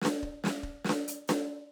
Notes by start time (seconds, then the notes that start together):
0.02 snare
0.05 snare
0.23 kick
0.44 snare
0.46 snare
0.63 kick
0.85 snare
0.89 snare
1.08 closed hi-hat
1.28 snare, hi-hat pedal